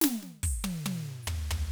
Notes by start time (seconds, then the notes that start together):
0.01 snare
0.04 snare
0.22 snare
0.43 open hi-hat, kick
0.64 high tom
0.86 high tom
1.23 hi-hat pedal
1.27 floor tom
1.51 floor tom